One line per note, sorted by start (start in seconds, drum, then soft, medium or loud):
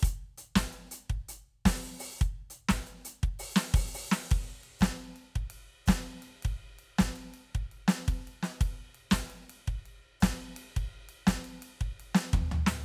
0.01 closed hi-hat loud
0.01 kick medium
0.01 hi-hat pedal soft
0.38 closed hi-hat loud
0.56 kick medium
0.56 snare loud
0.73 closed hi-hat medium
0.91 closed hi-hat loud
1.10 kick medium
1.29 closed hi-hat loud
1.65 open hi-hat loud
1.65 kick medium
1.65 snare loud
2.00 open hi-hat loud
2.19 closed hi-hat medium
2.19 kick medium
2.19 hi-hat pedal medium
2.50 closed hi-hat loud
2.69 kick medium
2.69 snare loud
2.86 closed hi-hat medium
3.05 closed hi-hat loud
3.23 kick medium
3.39 open hi-hat loud
3.56 snare loud
3.74 open hi-hat loud
3.74 kick loud
3.94 open hi-hat loud
4.11 snare loud
4.31 kick loud
4.31 ride medium
4.64 ride soft
4.79 kick medium
4.79 snare loud
4.79 hi-hat pedal medium
4.98 ride soft
5.16 ride soft
5.36 kick medium
5.50 ride medium
5.86 kick medium
5.86 snare loud
5.86 hi-hat pedal medium
5.86 ride loud
6.22 ride medium
6.43 kick medium
6.43 ride medium
6.69 ride soft
6.79 ride medium
6.98 kick medium
6.98 snare loud
6.98 hi-hat pedal medium
7.16 ride medium
7.34 ride medium
7.51 ride soft
7.55 kick medium
7.59 ride soft
7.72 ride soft
7.88 snare loud
8.08 kick medium
8.08 ride medium
8.27 ride medium
8.43 snare medium
8.61 kick medium
8.61 ride medium
8.95 ride medium
9.10 kick medium
9.10 snare loud
9.10 hi-hat pedal soft
9.30 ride medium
9.50 ride medium
9.68 kick medium
9.72 ride soft
9.86 ride soft
10.20 kick medium
10.20 snare loud
10.20 hi-hat pedal medium
10.20 ride loud
10.56 ride medium
10.76 kick medium
10.76 ride medium
11.09 ride medium
11.27 kick medium
11.27 snare loud
11.27 hi-hat pedal medium
11.45 ride medium
11.62 ride medium
11.81 kick medium
12.00 ride medium
12.15 snare loud
12.33 kick medium
12.33 floor tom loud
12.51 floor tom loud
12.67 snare loud